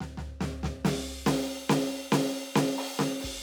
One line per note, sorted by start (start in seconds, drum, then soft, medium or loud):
0.00 snare medium
0.00 floor tom medium
0.17 snare medium
0.17 floor tom medium
0.41 snare loud
0.41 floor tom medium
0.63 snare medium
0.63 floor tom medium
0.85 snare loud
0.85 ride loud
1.26 snare loud
1.26 crash loud
1.48 crash soft
1.69 snare loud
1.69 crash loud
1.90 crash medium
2.12 snare loud
2.12 crash loud
2.34 crash medium
2.56 snare loud
2.56 crash loud
2.78 crash loud
2.99 snare loud
3.20 kick soft
3.20 ride loud